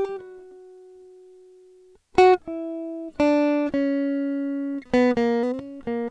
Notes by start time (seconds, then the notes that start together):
0.00 G4
0.18 F#4
2.20 F#4
2.49 E4
3.21 D4
3.75 C#4
4.95 B3
5.19 A#3
5.53 C4
5.89 A#3